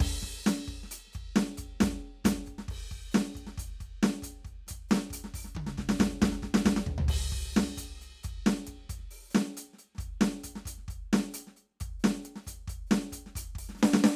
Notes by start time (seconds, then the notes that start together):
0.01 kick, crash
0.21 open hi-hat, kick, snare
0.44 closed hi-hat, snare, hi-hat pedal
0.68 kick, closed hi-hat
0.84 snare
0.92 closed hi-hat
1.08 snare
1.14 closed hi-hat, kick
1.37 snare
1.58 closed hi-hat, kick
1.81 open hi-hat, kick, snare
2.25 closed hi-hat, kick, snare
2.47 closed hi-hat, kick
2.59 snare
2.69 kick, crash
2.92 closed hi-hat, kick
3.12 snare, hi-hat pedal
3.36 kick, closed hi-hat
3.47 snare
3.58 closed hi-hat, kick
3.69 snare
3.81 closed hi-hat, kick
4.03 snare
4.23 closed hi-hat, kick
4.45 closed hi-hat, kick
4.68 closed hi-hat, kick, snare
4.89 snare, hi-hat pedal
4.96 snare
5.11 closed hi-hat, kick
5.25 snare
5.35 open hi-hat, kick
5.45 snare
5.56 kick, high tom
5.67 snare
5.78 kick, snare
5.90 snare
6.00 kick, snare
6.22 kick, snare
6.33 snare
6.43 kick, snare
6.55 snare
6.66 kick, snare, hi-hat pedal
6.77 snare
6.87 kick, floor tom
6.99 floor tom
7.09 kick, crash
7.32 open hi-hat, kick
7.53 snare, hi-hat pedal
7.78 closed hi-hat, kick
7.97 snare
8.02 closed hi-hat
8.24 closed hi-hat, kick
8.47 snare
8.68 kick, closed hi-hat
8.90 closed hi-hat, kick
9.00 snare
9.11 open hi-hat
9.31 hi-hat pedal
9.35 snare
9.58 closed hi-hat
9.74 snare
9.79 closed hi-hat
9.96 kick, snare
10.01 closed hi-hat
10.22 snare
10.44 closed hi-hat, kick
10.56 snare
10.66 closed hi-hat, kick
10.78 snare
10.89 closed hi-hat, kick
11.14 snare
11.19 snare
11.32 closed hi-hat, hi-hat pedal
11.48 snare
11.57 closed hi-hat
11.81 closed hi-hat, kick
12.00 hi-hat pedal
12.05 snare
12.22 closed hi-hat, hi-hat pedal
12.36 snare
12.44 kick, hi-hat pedal
12.48 closed hi-hat
12.68 closed hi-hat, kick
12.88 hi-hat pedal
12.92 snare
13.13 closed hi-hat, kick
13.27 snare
13.36 closed hi-hat, kick
13.56 kick, open hi-hat
13.70 snare
13.75 snare, hi-hat pedal
13.80 snare
13.84 snare
13.94 snare
14.05 snare